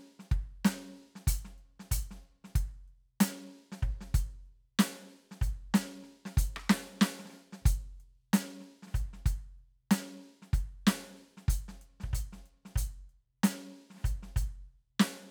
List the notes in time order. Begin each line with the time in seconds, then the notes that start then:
0.01 closed hi-hat
0.20 snare
0.32 kick, closed hi-hat
0.65 closed hi-hat, snare
0.97 closed hi-hat
1.16 snare
1.27 closed hi-hat, kick
1.45 snare
1.58 closed hi-hat
1.80 snare
1.91 closed hi-hat, kick
2.11 snare
2.24 closed hi-hat
2.44 snare
2.56 kick, closed hi-hat
2.88 closed hi-hat
3.21 closed hi-hat, snare
3.52 closed hi-hat
3.72 snare
3.83 kick, closed hi-hat
4.01 snare
4.14 closed hi-hat, kick
4.46 closed hi-hat
4.79 closed hi-hat, snare
5.31 snare
5.42 closed hi-hat, kick
5.74 closed hi-hat, snare
6.04 snare, closed hi-hat
6.26 snare
6.37 closed hi-hat, kick
6.57 cross-stick
6.70 snare
7.01 snare
7.19 snare
7.25 snare
7.33 snare
7.53 snare
7.62 kick
7.66 closed hi-hat, kick
8.00 closed hi-hat
8.34 closed hi-hat, snare
8.61 snare, closed hi-hat
8.83 snare
8.87 snare
8.90 snare
8.95 closed hi-hat, kick, snare
9.13 snare
9.26 closed hi-hat, kick
9.58 closed hi-hat
9.91 closed hi-hat, snare
10.23 closed hi-hat
10.42 snare
10.53 closed hi-hat, kick
10.87 closed hi-hat, snare
11.17 closed hi-hat
11.37 snare
11.48 closed hi-hat, kick
11.68 snare
11.82 closed hi-hat
12.00 kick, snare
12.13 closed hi-hat, kick
12.33 snare
12.46 closed hi-hat
12.65 snare
12.76 closed hi-hat, kick
13.10 closed hi-hat
13.44 closed hi-hat, snare
13.90 snare
13.94 snare
13.97 snare
13.99 snare
14.01 kick, snare
14.06 closed hi-hat
14.23 snare
14.36 closed hi-hat, kick
15.00 snare